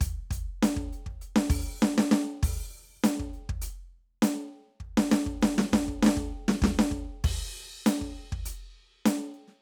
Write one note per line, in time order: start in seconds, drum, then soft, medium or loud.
0.01 closed hi-hat loud
0.01 kick loud
0.31 closed hi-hat loud
0.31 kick loud
0.63 closed hi-hat loud
0.63 snare loud
0.77 kick medium
0.93 closed hi-hat soft
1.06 kick medium
1.06 crash soft
1.11 ride soft
1.22 closed hi-hat medium
1.36 snare loud
1.50 open hi-hat loud
1.50 kick loud
1.82 snare loud
1.82 hi-hat pedal medium
1.98 snare loud
2.12 snare loud
2.43 open hi-hat loud
2.43 kick loud
2.97 kick soft
3.03 closed hi-hat loud
3.03 snare loud
3.03 hi-hat pedal soft
3.20 kick medium
3.33 closed hi-hat soft
3.49 kick medium
3.62 closed hi-hat loud
4.22 closed hi-hat loud
4.22 snare loud
4.80 kick medium
4.85 ride soft
4.98 snare loud
5.11 snare loud
5.11 hi-hat pedal medium
5.26 kick medium
5.42 snare loud
5.42 hi-hat pedal medium
5.58 snare loud
5.73 kick medium
5.73 snare loud
5.88 kick medium
6.03 snare loud
6.03 hi-hat pedal medium
6.07 snare loud
6.17 kick medium
6.29 hi-hat pedal soft
6.48 snare loud
6.62 kick loud
6.62 snare loud
6.79 snare loud
6.91 kick medium
6.91 snare soft
7.21 kick soft
7.24 kick loud
7.24 crash loud
7.85 closed hi-hat loud
7.85 kick soft
7.85 snare loud
8.01 kick medium
8.15 closed hi-hat soft
8.32 kick medium
8.46 closed hi-hat loud
9.06 closed hi-hat loud
9.06 snare loud
9.34 closed hi-hat soft
9.48 snare soft